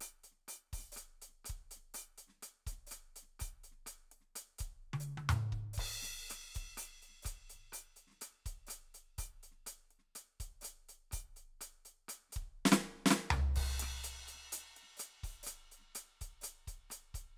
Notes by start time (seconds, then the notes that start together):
0.01 open hi-hat, cross-stick
0.24 closed hi-hat
0.32 snare
0.48 open hi-hat, cross-stick
0.73 open hi-hat, kick
0.79 snare
0.92 hi-hat pedal
0.97 closed hi-hat, cross-stick
1.22 closed hi-hat
1.29 snare
1.45 closed hi-hat, cross-stick
1.50 kick
1.71 closed hi-hat
1.76 snare
1.94 open hi-hat, cross-stick
2.18 closed hi-hat
2.27 snare
2.43 closed hi-hat, cross-stick
2.67 closed hi-hat, kick
2.72 snare
2.87 hi-hat pedal
2.91 closed hi-hat, cross-stick
3.16 closed hi-hat
3.23 snare
3.40 open hi-hat, kick, cross-stick, hi-hat pedal
3.64 closed hi-hat
3.72 snare
3.87 closed hi-hat, cross-stick
4.12 closed hi-hat
4.21 snare
4.36 closed hi-hat, cross-stick
4.59 closed hi-hat, kick
4.94 high tom
5.00 hi-hat pedal
5.18 high tom
5.29 hi-hat pedal, mid tom
5.53 kick
5.74 hi-hat pedal
5.78 kick, crash
5.84 kick
5.87 kick
6.03 closed hi-hat, snare
6.30 open hi-hat, cross-stick, snare
6.55 closed hi-hat, kick
6.62 snare
6.77 open hi-hat, cross-stick
7.03 closed hi-hat
7.09 snare
7.11 snare
7.23 closed hi-hat, kick, cross-stick, hi-hat pedal
7.50 closed hi-hat
7.54 mid tom
7.73 open hi-hat, cross-stick
7.96 closed hi-hat
8.07 snare
8.09 snare
8.22 closed hi-hat, cross-stick
8.46 closed hi-hat, kick
8.67 closed hi-hat, cross-stick, hi-hat pedal
8.95 closed hi-hat
9.18 open hi-hat, kick, cross-stick
9.43 closed hi-hat
9.52 snare
9.67 closed hi-hat, cross-stick
9.91 closed hi-hat
9.99 snare
10.16 closed hi-hat, cross-stick
10.40 closed hi-hat, kick
10.61 closed hi-hat, cross-stick, hi-hat pedal
10.89 closed hi-hat
11.12 open hi-hat, kick, cross-stick
11.37 closed hi-hat
11.61 closed hi-hat, cross-stick
11.85 closed hi-hat
12.08 closed hi-hat, cross-stick, snare
12.30 closed hi-hat, snare
12.36 kick
12.42 kick
12.66 snare
12.72 snare
13.06 snare
13.11 snare
13.31 floor tom
13.55 kick, hi-hat pedal, crash
13.80 cross-stick, closed hi-hat
13.84 cross-stick
14.04 closed hi-hat
14.28 closed hi-hat
14.35 snare
14.53 closed hi-hat, cross-stick
14.77 closed hi-hat
14.83 snare
14.97 closed hi-hat, cross-stick, hi-hat pedal
15.24 open hi-hat, kick
15.43 closed hi-hat, cross-stick, snare, hi-hat pedal
15.72 closed hi-hat
15.79 snare
15.95 closed hi-hat, cross-stick, snare
16.21 closed hi-hat, kick
16.42 closed hi-hat, cross-stick, hi-hat pedal
16.68 closed hi-hat, kick
16.90 closed hi-hat, cross-stick, hi-hat pedal
17.15 closed hi-hat, kick